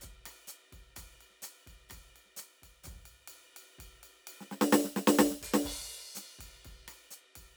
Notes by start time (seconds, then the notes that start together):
0.01 kick, hi-hat pedal, ride
0.09 kick, snare
0.26 cross-stick, snare, ride
0.47 hi-hat pedal, ride
0.72 kick, ride
0.96 kick, cross-stick, snare, hi-hat pedal, ride
1.02 kick
1.21 ride
1.30 snare
1.42 cross-stick, hi-hat pedal, ride
1.67 kick, ride
1.89 kick, cross-stick, hi-hat pedal, ride
1.96 kick
2.16 ride
2.25 snare
2.37 cross-stick, hi-hat pedal, ride
2.62 kick, ride
2.84 kick, cross-stick, hi-hat pedal, ride, floor tom
2.92 kick, snare
2.97 snare
3.06 ride
3.28 ride
3.56 ride
3.79 kick, ride
4.03 ride
4.27 ride
4.41 snare
4.51 snare
4.61 snare
4.71 kick, snare
4.84 snare
4.96 snare
5.07 snare
5.19 kick, snare
5.31 snare
5.42 kick, closed hi-hat
5.47 kick
5.54 snare
5.64 kick, crash
6.15 snare, hi-hat pedal, ride
6.39 kick, ride
6.44 kick
6.65 kick, snare, ride
6.71 kick
6.88 cross-stick, snare, ride
7.11 hi-hat pedal
7.36 kick, ride